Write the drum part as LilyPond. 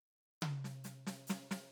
\new DrumStaff \drummode { \time 4/4 \tempo 4 = 140 r4 <hhp tommh>8 sn8 <hhp sn>8 sn8 <hhp sn>8 sn8 | }